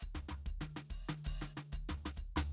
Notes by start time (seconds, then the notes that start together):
0.00 kick, hi-hat pedal
0.15 snare, floor tom
0.29 snare, floor tom
0.46 kick, hi-hat pedal
0.61 snare, high tom
0.76 snare, high tom
0.90 kick, hi-hat pedal
1.09 snare, high tom
1.24 kick, hi-hat pedal
1.41 snare, high tom
1.57 snare, high tom
1.72 kick, hi-hat pedal
1.89 snare, floor tom
2.05 snare, floor tom
2.16 kick, hi-hat pedal
2.36 snare, floor tom